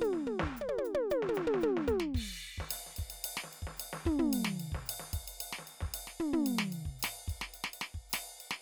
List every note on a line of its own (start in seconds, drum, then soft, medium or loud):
0.01 hi-hat pedal medium
0.01 mid tom loud
0.13 snare soft
0.26 mid tom medium
0.40 kick soft
0.40 snare medium
0.56 hi-hat pedal loud
0.61 high tom medium
0.69 high tom loud
0.78 high tom loud
0.84 hi-hat pedal medium
0.94 high tom loud
1.10 hi-hat pedal medium
1.10 high tom loud
1.22 snare medium
1.28 mid tom loud
1.34 snare medium
1.34 hi-hat pedal medium
1.47 mid tom loud
1.54 snare soft
1.61 hi-hat pedal medium
1.61 mid tom loud
1.77 snare medium
1.87 kick soft
1.87 hi-hat pedal medium
1.87 mid tom loud
2.00 snare medium
2.14 kick medium
2.14 hi-hat pedal medium
2.14 crash medium
2.27 kick soft
2.58 kick soft
2.58 snare soft
2.69 hi-hat pedal medium
2.69 ride bell loud
2.86 snare soft
2.91 snare soft
2.96 kick soft
2.96 ride medium
3.08 snare soft
3.08 ride medium
3.12 snare soft
3.24 hi-hat pedal medium
3.24 ride bell loud
3.37 snare loud
3.44 snare soft
3.53 ride soft
3.62 kick soft
3.67 snare soft
3.77 hi-hat pedal medium
3.77 ride bell loud
3.93 snare medium
4.05 kick soft
4.05 floor tom loud
4.18 floor tom loud
4.32 hi-hat pedal medium
4.32 ride loud
4.45 snare loud
4.60 ride medium
4.72 kick soft
4.72 snare soft
4.77 kick soft
4.86 hi-hat pedal medium
4.86 ride bell loud
5.00 snare soft
5.05 snare soft
5.13 kick soft
5.13 ride medium
5.18 kick soft
5.18 snare soft
5.23 snare soft
5.28 ride medium
5.40 hi-hat pedal medium
5.40 ride loud
5.53 snare medium
5.59 snare soft
5.67 ride medium
5.81 kick soft
5.81 snare soft
5.88 kick soft
5.94 hi-hat pedal medium
5.94 ride loud
6.07 snare soft
6.19 floor tom loud
6.33 floor tom loud
6.46 hi-hat pedal medium
6.46 ride medium
6.58 snare loud
6.72 ride medium
6.85 kick soft
6.99 hi-hat pedal medium
6.99 ride bell loud
7.04 snare loud
7.28 kick soft
7.28 ride medium
7.34 kick soft
7.41 snare medium
7.54 hi-hat pedal medium
7.54 ride bell medium
7.64 snare loud
7.73 ride medium
7.81 snare loud
7.94 kick soft
8.09 hi-hat pedal medium
8.09 ride bell loud
8.14 snare loud
8.40 ride medium
8.51 snare loud